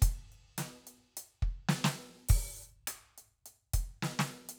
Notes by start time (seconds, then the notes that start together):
0.02 kick, closed hi-hat
0.32 closed hi-hat
0.58 snare, closed hi-hat
0.87 closed hi-hat
1.17 closed hi-hat
1.43 kick
1.69 snare
1.84 snare
2.29 kick, open hi-hat
2.62 open hi-hat
2.88 cross-stick, closed hi-hat
3.18 closed hi-hat
3.46 closed hi-hat
3.74 kick, closed hi-hat
4.03 snare
4.19 snare
4.49 closed hi-hat